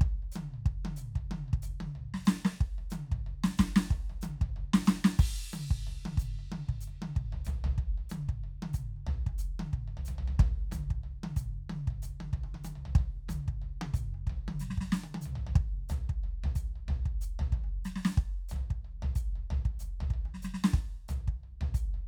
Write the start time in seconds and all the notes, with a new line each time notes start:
0.01 kick, floor tom
0.20 kick, floor tom
0.32 hi-hat pedal
0.36 high tom
0.54 floor tom
0.66 kick, floor tom
0.85 high tom
0.96 floor tom, hi-hat pedal
1.15 kick, floor tom
1.31 high tom
1.48 floor tom
1.53 kick
1.62 floor tom, hi-hat pedal
1.80 high tom
1.95 floor tom
2.14 snare
2.25 kick, snare, hi-hat pedal
2.45 snare
2.60 kick, floor tom
2.78 floor tom
2.90 hi-hat pedal, high tom
3.12 kick, floor tom
3.26 floor tom
3.44 snare
3.58 kick, snare, hi-hat pedal
3.76 snare
3.91 kick, floor tom
4.10 floor tom
4.21 hi-hat pedal, high tom
4.41 kick, floor tom
4.56 floor tom
4.74 snare
4.85 snare, hi-hat pedal
5.04 snare
5.19 kick, crash
5.52 hi-hat pedal, high tom
5.71 kick
5.87 floor tom
6.05 high tom
6.17 kick, floor tom, hi-hat pedal
6.39 floor tom
6.52 high tom
6.69 kick, floor tom
6.81 hi-hat pedal
6.88 floor tom
7.02 high tom
7.16 kick, floor tom
7.32 floor tom
7.45 floor tom, hi-hat pedal
7.64 floor tom
7.78 kick, floor tom
7.98 floor tom
8.09 hi-hat pedal, high tom
8.29 kick, floor tom
8.44 floor tom
8.62 high tom
8.73 kick, floor tom, hi-hat pedal
8.96 high tom
9.07 floor tom
9.26 kick, high tom
9.38 floor tom, hi-hat pedal
9.60 high tom
9.73 kick, floor tom
9.88 floor tom
9.97 floor tom
10.05 floor tom, hi-hat pedal
10.18 floor tom
10.28 floor tom
10.39 kick, floor tom
10.72 floor tom, hi-hat pedal, high tom
10.90 kick
11.04 floor tom
11.23 high tom
11.36 kick, floor tom, hi-hat pedal
11.70 high tom
11.87 kick, floor tom
12.02 floor tom, hi-hat pedal
12.20 high tom
12.33 kick, floor tom
12.44 high tom
12.54 high tom
12.64 hi-hat pedal, high tom
12.76 floor tom
12.85 floor tom
12.95 kick, floor tom
13.29 floor tom, hi-hat pedal, high tom
13.48 kick
13.62 floor tom
13.81 high tom
13.94 kick, floor tom, hi-hat pedal
14.14 high tom
14.27 kick, floor tom
14.48 high tom
14.60 snare, hi-hat pedal
14.70 snare
14.77 kick, snare
14.92 snare
15.04 high tom
15.14 high tom
15.21 hi-hat pedal
15.26 floor tom
15.36 floor tom
15.47 floor tom
15.56 kick
15.89 floor tom, hi-hat pedal
16.09 kick
16.24 floor tom
16.44 floor tom
16.55 kick, floor tom, hi-hat pedal
16.76 floor tom
16.88 floor tom
17.06 kick, floor tom
17.21 floor tom, hi-hat pedal
17.39 floor tom
17.52 kick, floor tom
17.64 high tom
17.85 snare, hi-hat pedal
17.96 snare
18.05 snare
18.17 kick
18.49 floor tom, hi-hat pedal
18.56 floor tom
18.70 kick
18.85 floor tom
19.02 floor tom
19.15 kick, floor tom, hi-hat pedal
19.36 floor tom
19.50 floor tom
19.65 kick, floor tom
19.79 floor tom, hi-hat pedal
20.01 floor tom
20.10 kick, floor tom
20.25 high tom
20.34 kick, snare
20.42 snare, hi-hat pedal
20.54 snare
20.64 snare
20.74 kick, floor tom
21.08 floor tom, hi-hat pedal
21.28 kick
21.44 floor tom
21.61 floor tom
21.74 kick, floor tom, hi-hat pedal
21.94 floor tom